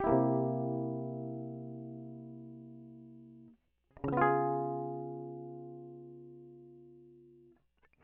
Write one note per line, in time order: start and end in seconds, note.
0.00 3.53 E4
0.00 2.86 G4
0.07 0.19 E3
0.07 3.57 A#3
0.13 3.50 C3
0.19 2.15 E4
4.05 7.52 C#3
4.09 4.15 E3
4.09 7.59 B3
4.17 7.59 F4
4.21 6.26 G#4